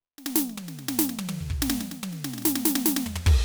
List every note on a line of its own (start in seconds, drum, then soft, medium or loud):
0.18 snare soft
0.26 snare medium
0.36 snare loud
0.49 snare soft
0.57 high tom loud
0.68 snare medium
0.68 hi-hat pedal soft
0.79 snare soft
0.88 snare loud
0.99 snare loud
1.09 snare medium
1.19 high tom loud
1.40 kick soft
1.50 kick medium
1.62 snare loud
1.70 snare loud
1.81 snare medium
1.91 snare medium
2.03 high tom loud
2.13 snare soft
2.24 snare medium
2.33 snare medium
2.38 snare medium
2.42 snare soft
2.45 snare loud
2.55 snare loud
2.65 snare loud
2.75 snare loud
2.86 snare loud
2.96 snare loud
3.06 floor tom loud
3.16 floor tom loud
3.26 kick loud
3.26 ride loud